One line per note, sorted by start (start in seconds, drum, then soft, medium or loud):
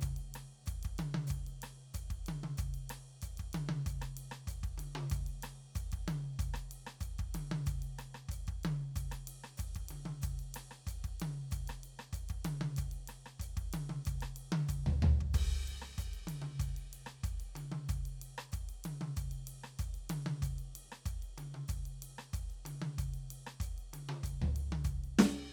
0.01 kick medium
0.01 hi-hat pedal medium
0.01 ride soft
0.17 ride soft
0.34 cross-stick medium
0.34 ride medium
0.66 kick medium
0.66 hi-hat pedal medium
0.66 ride soft
0.83 kick soft
0.83 ride soft
0.99 high tom loud
0.99 ride soft
1.15 high tom loud
1.27 kick medium
1.27 hi-hat pedal medium
1.27 ride soft
1.47 ride soft
1.62 cross-stick medium
1.62 ride medium
1.94 kick soft
1.94 hi-hat pedal medium
1.94 ride soft
2.11 kick soft
2.11 ride soft
2.27 high tom medium
2.27 ride soft
2.44 high tom medium
2.58 kick medium
2.58 hi-hat pedal medium
2.58 ride soft
2.74 ride soft
2.90 cross-stick medium
2.90 ride medium
3.22 kick soft
3.22 hi-hat pedal medium
3.22 ride soft
3.38 kick soft
3.38 ride soft
3.53 high tom loud
3.53 ride soft
3.69 high tom loud
3.86 kick medium
3.86 hi-hat pedal medium
3.86 ride soft
4.02 cross-stick medium
4.02 ride soft
4.17 ride medium
4.32 cross-stick medium
4.48 kick medium
4.48 hi-hat pedal medium
4.48 ride soft
4.64 kick medium
4.64 ride soft
4.78 high tom medium
4.78 ride medium
4.95 high tom medium
5.10 kick medium
5.10 hi-hat pedal medium
5.10 ride medium
5.27 ride soft
5.43 cross-stick medium
5.43 ride medium
5.75 kick medium
5.75 hi-hat pedal medium
5.75 ride soft
5.92 kick medium
5.92 ride soft
6.08 high tom loud
6.08 ride soft
6.39 kick medium
6.39 hi-hat pedal medium
6.39 ride soft
6.54 cross-stick medium
6.54 ride soft
6.71 ride medium
6.87 cross-stick medium
7.01 kick medium
7.01 hi-hat pedal medium
7.01 ride soft
7.19 kick medium
7.19 ride soft
7.35 high tom medium
7.35 ride medium
7.52 high tom loud
7.66 kick medium
7.66 hi-hat pedal medium
7.66 ride soft
7.82 ride soft
7.99 cross-stick medium
7.99 ride soft
8.15 cross-stick medium
8.29 kick medium
8.29 hi-hat pedal medium
8.29 ride soft
8.48 kick medium
8.48 ride soft
8.64 high tom loud
8.64 ride soft
8.96 kick medium
8.96 hi-hat pedal medium
8.96 ride medium
9.12 cross-stick medium
9.12 ride soft
9.28 ride medium
9.44 cross-stick medium
9.58 kick medium
9.58 hi-hat pedal medium
9.58 ride medium
9.75 kick soft
9.75 ride soft
9.89 high tom medium
9.89 ride medium
10.06 high tom medium
10.22 kick medium
10.22 hi-hat pedal medium
10.22 ride medium
10.39 ride soft
10.55 cross-stick medium
10.55 ride medium
10.71 cross-stick medium
10.87 kick medium
10.87 hi-hat pedal medium
10.87 ride soft
11.04 kick soft
11.04 ride soft
11.20 high tom loud
11.20 ride medium
11.51 kick medium
11.51 hi-hat pedal medium
11.51 ride soft
11.68 cross-stick medium
11.68 ride soft
11.84 ride soft
11.99 cross-stick medium
12.13 kick medium
12.13 hi-hat pedal medium
12.13 ride soft
12.29 kick medium
12.29 ride soft
12.45 high tom loud
12.45 ride medium
12.61 high tom loud
12.77 kick medium
12.77 hi-hat pedal medium
12.77 ride soft
12.92 ride soft
13.08 cross-stick medium
13.08 ride medium
13.26 cross-stick medium
13.40 kick soft
13.40 hi-hat pedal medium
13.40 ride soft
13.57 kick medium
13.57 ride soft
13.73 high tom medium
13.73 ride medium
13.90 high tom medium
14.06 kick medium
14.06 hi-hat pedal medium
14.06 ride soft
14.21 cross-stick medium
14.21 ride soft
14.36 ride medium
14.52 high tom loud
14.69 kick medium
14.69 hi-hat pedal medium
14.69 ride medium
14.87 floor tom loud
15.03 floor tom loud
15.21 kick soft
15.34 kick medium
15.34 hi-hat pedal medium
15.34 crash medium
15.34 ride medium
15.68 ride soft
15.82 cross-stick medium
15.98 kick medium
15.98 hi-hat pedal medium
15.98 ride soft
16.14 ride soft
16.27 high tom medium
16.27 ride medium
16.42 high tom medium
16.60 kick medium
16.60 hi-hat pedal medium
16.60 ride soft
16.77 ride soft
16.93 ride medium
17.07 cross-stick medium
17.24 kick medium
17.24 hi-hat pedal medium
17.24 ride soft
17.40 ride soft
17.56 high tom medium
17.56 ride soft
17.72 high tom medium
17.89 kick medium
17.89 hi-hat pedal medium
17.89 ride soft
18.06 ride soft
18.22 ride medium
18.38 cross-stick medium
18.52 kick medium
18.52 hi-hat pedal medium
18.52 ride soft
18.69 ride soft
18.84 high tom medium
18.84 ride medium
19.01 high tom medium
19.17 kick medium
19.17 hi-hat pedal medium
19.17 ride soft
19.32 ride soft
19.47 ride medium
19.64 cross-stick medium
19.79 kick medium
19.79 hi-hat pedal medium
19.79 ride soft
19.95 ride soft
20.10 high tom loud
20.10 ride medium
20.26 high tom loud
20.42 kick medium
20.42 hi-hat pedal medium
20.42 ride soft
20.59 ride soft
20.76 ride medium
20.92 cross-stick medium
21.06 kick medium
21.06 hi-hat pedal medium
21.06 ride soft
21.23 ride soft
21.38 high tom medium
21.38 ride soft
21.55 high tom medium
21.68 kick medium
21.68 hi-hat pedal medium
21.68 ride medium
21.86 ride soft
22.03 ride medium
22.19 cross-stick medium
22.34 kick medium
22.34 hi-hat pedal medium
22.34 ride soft
22.50 ride soft
22.66 high tom medium
22.66 ride medium
22.82 high tom medium
22.99 kick medium
22.99 hi-hat pedal medium
22.99 ride soft
23.14 ride soft
23.31 ride medium
23.47 cross-stick medium
23.60 kick medium
23.60 hi-hat pedal medium
23.60 ride soft
23.78 ride soft
23.94 high tom medium
23.94 ride medium
24.09 high tom medium
24.24 kick medium
24.24 hi-hat pedal medium
24.24 ride soft
24.42 floor tom loud
24.56 ride soft
24.72 high tom medium
24.85 kick medium
24.85 hi-hat pedal medium
24.85 ride soft
25.04 ride soft
25.19 snare loud
25.19 ride medium